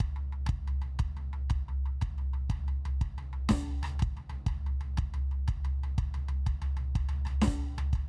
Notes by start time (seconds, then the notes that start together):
0.00 kick, floor tom
0.16 floor tom
0.33 floor tom
0.47 kick, floor tom
0.68 floor tom
0.82 floor tom
0.99 kick, floor tom
1.17 floor tom
1.33 floor tom
1.50 kick, floor tom
1.68 floor tom
1.86 floor tom
2.02 kick, floor tom
2.18 floor tom
2.34 floor tom
2.50 kick, floor tom
2.68 floor tom
2.85 floor tom
3.01 kick, floor tom
3.18 floor tom
3.33 floor tom
3.49 kick, snare, floor tom
3.83 cross-stick, floor tom
3.99 kick, floor tom
4.17 floor tom
4.30 floor tom
4.47 kick, floor tom
4.66 floor tom
4.81 floor tom
4.97 kick, floor tom
5.14 floor tom
5.31 floor tom
5.48 kick, floor tom
5.65 floor tom
5.84 floor tom
5.98 kick, floor tom
6.14 floor tom
6.29 floor tom
6.47 kick, floor tom
6.62 floor tom
6.77 floor tom
6.95 kick, floor tom
7.09 floor tom
7.25 cross-stick, floor tom
7.42 snare, floor tom
7.48 kick
7.78 floor tom
7.93 kick, floor tom